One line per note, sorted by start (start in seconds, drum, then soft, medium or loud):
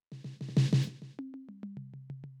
0.12 snare soft
0.24 snare soft
0.41 snare medium
0.49 snare soft
0.57 snare loud
0.73 snare loud
0.82 hi-hat pedal medium
0.87 snare soft
1.02 snare soft
1.19 high tom medium
1.34 high tom medium
1.49 mid tom soft
1.63 mid tom medium
1.77 floor tom medium
1.94 floor tom soft
2.10 floor tom medium
2.24 floor tom medium